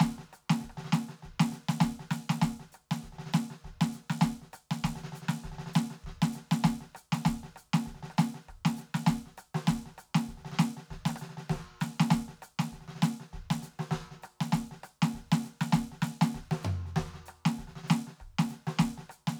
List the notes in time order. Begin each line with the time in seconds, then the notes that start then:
0.01 kick, snare
0.19 snare
0.34 cross-stick, hi-hat pedal
0.51 snare
0.61 kick, snare
0.70 cross-stick
0.75 snare
0.78 snare
0.85 snare
0.93 snare, hi-hat pedal
1.10 snare
1.23 kick, snare
1.41 snare
1.53 snare, hi-hat pedal
1.70 snare
1.81 kick, snare
2.00 snare
2.12 snare, hi-hat pedal
2.30 snare
2.43 kick, snare
2.60 snare
2.73 cross-stick, hi-hat pedal
2.92 snare
3.04 kick, snare
3.13 snare
3.19 snare
3.27 snare
3.34 snare, hi-hat pedal
3.51 snare
3.65 kick, snare
3.82 snare
3.93 snare, hi-hat pedal
4.11 snare
4.22 kick, snare
4.43 snare
4.54 cross-stick, hi-hat pedal
4.72 snare
4.84 kick, snare
4.97 snare
5.04 snare
5.13 snare, hi-hat pedal
5.23 snare
5.29 snare
5.45 kick, snare
5.53 snare
5.59 snare
5.67 snare
5.74 snare, hi-hat pedal
5.91 snare
6.05 kick, snare
6.23 snare
6.34 snare, hi-hat pedal
6.52 snare
6.65 kick, snare
6.82 snare
6.96 cross-stick, hi-hat pedal
7.13 snare
7.26 kick, snare
7.44 snare
7.57 cross-stick, hi-hat pedal
7.74 snare
7.87 kick, snare
7.96 snare
8.04 snare
8.11 cross-stick
8.19 snare, hi-hat pedal
8.35 snare
8.49 kick, cross-stick
8.66 snare
8.77 snare, hi-hat pedal
8.95 snare
9.07 kick, snare
9.27 snare
9.38 cross-stick, hi-hat pedal
9.55 snare
9.68 kick, snare
9.87 snare
9.99 cross-stick, hi-hat pedal
10.16 snare
10.28 kick, snare
10.46 snare
10.53 snare
10.60 snare, hi-hat pedal
10.78 snare
10.91 kick, snare
11.06 cross-stick, snare
11.17 cross-stick, hi-hat pedal
11.22 snare
11.30 snare
11.38 snare
11.46 snare
11.51 kick, snare
11.56 snare
11.82 snare, hi-hat pedal
12.01 snare
12.11 kick, snare
12.29 snare
12.43 cross-stick, hi-hat pedal
12.60 snare
12.73 kick, snare
12.82 snare
12.89 snare
12.96 snare
13.03 snare, hi-hat pedal
13.21 snare
13.34 kick, snare
13.51 snare
13.63 snare, hi-hat pedal
13.80 snare
13.92 kick, snare
14.12 snare
14.23 cross-stick, hi-hat pedal
14.42 snare
14.53 kick, snare
14.72 snare
14.84 cross-stick, hi-hat pedal
15.03 snare
15.15 kick, snare
15.33 snare
15.45 snare, hi-hat pedal
15.62 snare
15.73 kick, snare
15.93 snare
16.03 snare, hi-hat pedal
16.22 snare
16.35 kick, snare
16.52 snare
16.64 floor tom, hi-hat pedal
16.86 snare
16.97 kick, snare
17.15 snare
17.27 cross-stick, hi-hat pedal
17.46 snare
17.59 kick, snare
17.68 snare
17.77 snare
17.84 snare
17.89 snare, hi-hat pedal
18.08 snare
18.21 kick, cross-stick
18.40 snare
18.49 snare, hi-hat pedal
18.68 snare
18.80 kick, snare
18.99 snare
19.10 cross-stick, hi-hat pedal
19.28 snare